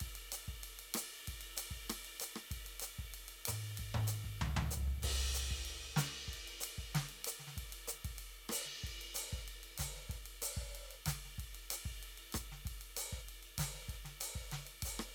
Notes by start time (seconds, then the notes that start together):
0.01 kick, ride
0.16 ride
0.32 hi-hat pedal, ride
0.49 kick
0.64 ride
0.80 ride
0.95 cross-stick, hi-hat pedal, ride
1.28 kick, ride
1.42 ride
1.57 hi-hat pedal, ride
1.71 kick
1.90 cross-stick, ride
2.05 ride
2.21 hi-hat pedal, ride
2.36 cross-stick
2.52 kick, ride
2.67 ride
2.80 hi-hat pedal, ride
2.99 kick
3.14 ride
3.29 ride
3.46 hi-hat pedal, high tom, ride
3.78 kick, ride
3.95 high tom
4.08 hi-hat pedal, ride
4.25 kick
4.42 floor tom
4.57 floor tom
4.71 hi-hat pedal, ride
4.88 kick
5.03 kick, crash, ride
5.35 hi-hat pedal, ride
5.51 kick
5.66 ride
5.97 snare, hi-hat pedal, ride
6.28 kick
6.34 ride
6.48 ride
6.61 hi-hat pedal, ride
6.79 kick
6.95 snare, ride
7.09 ride
7.25 hi-hat pedal, ride
7.40 snare
7.48 snare
7.53 snare
7.58 kick, ride
7.73 ride
7.88 hi-hat pedal
7.93 snare
8.05 kick, ride
8.19 ride
8.49 kick, cross-stick, hi-hat pedal, ride
8.66 snare
8.84 kick, ride
9.02 ride
9.15 hi-hat pedal, ride
9.33 kick, snare
9.48 ride
9.64 ride
9.78 kick, snare, hi-hat pedal, ride
9.96 snare
10.10 kick, ride
10.26 ride
10.42 hi-hat pedal, ride
10.57 kick, snare
10.76 ride
10.91 ride
11.07 kick, snare, hi-hat pedal, ride
11.25 snare
11.39 kick, ride
11.55 ride
11.71 hi-hat pedal, ride
11.86 kick, snare
12.03 ride
12.18 ride
12.33 kick, cross-stick, hi-hat pedal, ride
12.52 snare
12.66 kick, ride
12.82 ride
12.97 hi-hat pedal, ride
13.13 kick, snare
13.29 ride
13.43 ride
13.59 kick, snare, hi-hat pedal, ride
13.75 snare
13.89 kick, ride
14.05 snare, ride
14.21 hi-hat pedal, ride
14.36 kick
14.52 snare, ride
14.67 ride
14.83 kick, hi-hat pedal, ride
15.00 cross-stick